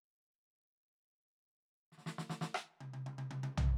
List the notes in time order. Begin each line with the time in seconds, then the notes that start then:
1.92 snare
1.98 snare
2.06 snare
2.18 snare
2.30 snare
2.41 snare
2.54 cross-stick
2.80 high tom
2.93 high tom
3.06 high tom
3.18 high tom
3.31 high tom
3.43 closed hi-hat, high tom
3.58 floor tom